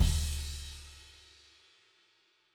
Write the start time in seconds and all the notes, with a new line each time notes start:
0.01 kick, crash